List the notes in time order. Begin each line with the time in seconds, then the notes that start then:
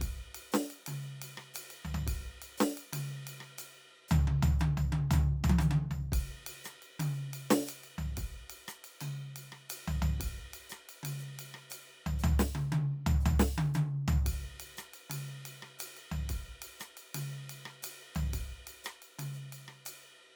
0.01 kick, ride
0.35 ride
0.52 snare, hi-hat pedal
0.70 ride
0.86 mid tom, ride
1.02 hi-hat pedal
1.22 ride
1.38 cross-stick
1.54 hi-hat pedal, ride
1.70 ride
1.85 floor tom
1.94 floor tom
2.07 kick, ride
2.42 ride
2.58 snare, hi-hat pedal
2.77 ride
2.93 mid tom, ride
3.06 hi-hat pedal
3.27 ride
3.40 cross-stick
3.58 hi-hat pedal, ride
4.08 floor tom, hi-hat pedal, mid tom
4.27 mid tom
4.43 floor tom
4.59 hi-hat pedal, mid tom
4.77 floor tom
4.92 mid tom
5.11 floor tom, hi-hat pedal, mid tom
5.44 floor tom
5.50 high tom
5.59 hi-hat pedal, mid tom
5.71 mid tom
5.91 floor tom
6.12 kick, ride
6.47 ride
6.64 cross-stick, hi-hat pedal
6.82 ride
7.00 mid tom, ride
7.13 hi-hat pedal
7.33 ride
7.51 snare
7.67 hi-hat pedal, ride
7.84 ride
7.98 floor tom
8.17 kick, ride
8.50 ride
8.68 cross-stick, hi-hat pedal
8.84 ride
9.01 mid tom, ride bell
9.36 ride
9.52 cross-stick
9.70 hi-hat pedal, ride
9.88 floor tom
9.97 kick
10.02 floor tom
10.20 kick, ride
10.54 ride
10.69 cross-stick, hi-hat pedal
10.89 ride
11.03 mid tom, ride
11.19 hi-hat pedal
11.39 ride
11.54 cross-stick
11.70 hi-hat pedal, ride
12.06 floor tom
12.19 hi-hat pedal
12.24 floor tom
12.39 snare
12.55 mid tom
12.72 hi-hat pedal, mid tom
13.06 floor tom
13.20 hi-hat pedal
13.26 floor tom
13.40 snare
13.58 mid tom
13.74 hi-hat pedal, mid tom
14.08 floor tom
14.26 kick, ride
14.60 ride
14.77 cross-stick, hi-hat pedal
14.94 ride
15.10 mid tom, ride
15.45 ride
15.63 cross-stick
15.79 hi-hat pedal, ride
15.97 ride
16.12 floor tom
16.29 kick, ride
16.62 ride
16.80 cross-stick, hi-hat pedal
16.97 ride
17.15 mid tom, ride
17.30 hi-hat pedal
17.50 ride
17.66 cross-stick
17.83 hi-hat pedal, ride
18.15 floor tom, ride
18.33 kick, ride
18.67 ride
18.84 cross-stick, hi-hat pedal
19.02 ride
19.19 mid tom, ride
19.34 hi-hat pedal
19.52 ride
19.68 cross-stick
19.85 hi-hat pedal, ride